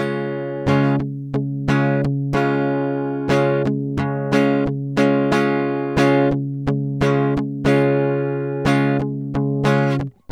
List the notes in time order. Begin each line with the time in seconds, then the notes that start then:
0.00 C#3 G#3 C#4 F4
0.68 C#3 G#3 C#4 F4
1.00 C#3 G#3
1.35 C#3 G#3
1.69 C#3 G#3 C#4 F4
2.05 C#3 A3
2.34 C#3 G#3 C#4 F4
3.30 C#3 G#3 C#4 F4
3.66 C#3 G#3
3.98 C#3 G#3 C#4
4.33 G#3 C#4 F4
4.68 C#3 G#3
4.98 G#3 C#4 F4
5.33 G#3 C#4 F4
5.98 C#3 G#3 C#4 F4
6.32 C#3 G#3
6.68 C#3 G#3
7.02 C#3 G#3 C#4 F4
7.38 C#3 A3
7.66 C#3 G#3 C#4 F4
8.66 C#3 G#3 C#4 F4
9.00 C#3 G#3
9.35 C#3 G#3
9.65 C#3 G#3 C#4 F4
10.00 C#3